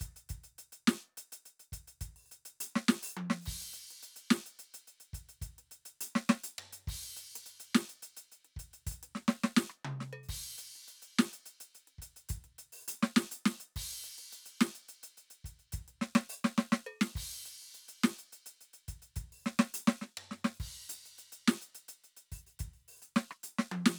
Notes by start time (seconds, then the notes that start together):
0.01 closed hi-hat, kick
0.16 closed hi-hat
0.29 closed hi-hat, kick
0.44 closed hi-hat
0.58 closed hi-hat
0.72 closed hi-hat
0.87 snare
1.17 closed hi-hat
1.32 closed hi-hat
1.46 closed hi-hat
1.60 closed hi-hat
1.72 closed hi-hat, kick
1.87 closed hi-hat
2.01 closed hi-hat, kick
2.06 kick
2.16 open hi-hat
2.26 open hi-hat
2.31 closed hi-hat
2.45 closed hi-hat
2.60 closed hi-hat
2.76 snare
2.88 snare
3.03 open hi-hat
3.17 high tom
3.30 snare
3.41 hi-hat pedal
3.46 kick, crash
3.61 closed hi-hat
3.73 closed hi-hat
3.91 closed hi-hat
4.03 closed hi-hat
4.16 closed hi-hat
4.31 snare
4.46 closed hi-hat
4.59 closed hi-hat
4.74 closed hi-hat
4.87 closed hi-hat
5.00 closed hi-hat
5.13 closed hi-hat, kick
5.29 closed hi-hat
5.42 closed hi-hat, kick
5.58 closed hi-hat
5.71 closed hi-hat
5.85 closed hi-hat
6.01 closed hi-hat
6.15 snare
6.29 snare
6.44 closed hi-hat
6.58 floor tom
6.73 closed hi-hat
6.87 kick, crash
6.93 kick
7.02 closed hi-hat
7.17 closed hi-hat
7.36 closed hi-hat
7.46 closed hi-hat
7.60 closed hi-hat
7.75 snare
7.89 closed hi-hat
8.03 closed hi-hat
8.17 closed hi-hat
8.32 closed hi-hat
8.45 closed hi-hat
8.56 closed hi-hat, kick
8.73 closed hi-hat
8.87 closed hi-hat, kick
8.91 closed hi-hat
9.03 closed hi-hat
9.15 snare
9.28 snare
9.44 snare
9.57 snare
9.70 cross-stick
9.85 mid tom
10.01 snare
10.13 percussion
10.23 hi-hat pedal
10.29 kick, crash
10.38 kick
10.58 closed hi-hat
10.76 closed hi-hat
10.88 closed hi-hat
11.02 closed hi-hat
11.19 snare
11.33 closed hi-hat
11.46 closed hi-hat
11.60 closed hi-hat
11.75 closed hi-hat
11.87 closed hi-hat
11.98 closed hi-hat, kick
12.16 closed hi-hat
12.29 closed hi-hat, kick
12.36 kick
12.44 closed hi-hat
12.58 closed hi-hat
12.72 open hi-hat
12.82 hi-hat pedal
12.88 closed hi-hat
13.03 snare
13.16 snare
13.31 closed hi-hat
13.46 snare
13.60 closed hi-hat
13.76 kick, crash
13.92 closed hi-hat
14.04 closed hi-hat
14.18 closed hi-hat
14.32 closed hi-hat
14.46 closed hi-hat
14.61 snare
14.75 closed hi-hat
14.89 closed hi-hat
15.03 closed hi-hat
15.17 closed hi-hat
15.30 closed hi-hat
15.44 closed hi-hat, kick
15.59 closed hi-hat
15.72 closed hi-hat, kick
15.80 kick
15.88 closed hi-hat
16.01 snare
16.15 snare
16.29 open hi-hat, hi-hat pedal
16.44 snare
16.58 snare, hi-hat pedal
16.72 snare
16.87 percussion
17.01 snare
17.15 kick, crash
17.24 kick
17.33 closed hi-hat
17.45 closed hi-hat
17.62 closed hi-hat
17.74 closed hi-hat
17.88 closed hi-hat
18.04 snare
18.19 closed hi-hat
18.33 closed hi-hat
18.46 closed hi-hat
18.61 closed hi-hat
18.73 closed hi-hat
18.88 closed hi-hat, kick
19.02 closed hi-hat
19.16 closed hi-hat, kick
19.32 open hi-hat
19.46 snare
19.59 snare
19.74 closed hi-hat
19.88 snare
20.02 snare
20.17 floor tom
20.31 snare
20.45 snare
20.54 hi-hat pedal
20.60 kick, crash
20.70 kick
20.89 closed hi-hat
21.05 closed hi-hat
21.18 closed hi-hat
21.32 closed hi-hat
21.48 snare
21.62 closed hi-hat
21.75 closed hi-hat
21.88 closed hi-hat
22.04 closed hi-hat
22.17 closed hi-hat
22.32 open hi-hat, kick
22.47 open hi-hat
22.59 closed hi-hat, kick
22.66 kick
22.69 kick
22.74 open hi-hat
22.88 open hi-hat
23.02 open hi-hat
23.16 snare
23.31 cross-stick
23.43 closed hi-hat
23.59 snare
23.72 high tom
23.86 snare